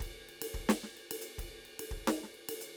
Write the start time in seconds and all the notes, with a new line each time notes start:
0.01 kick, ride
0.29 ride
0.42 ride
0.55 kick
0.70 snare, ride bell
0.84 snare
0.98 ride
1.12 ride
1.22 closed hi-hat
1.39 kick, ride
1.51 closed hi-hat
1.66 ride
1.80 ride
1.92 kick
2.08 snare, ride
2.24 snare
2.35 ride
2.49 ride
2.62 closed hi-hat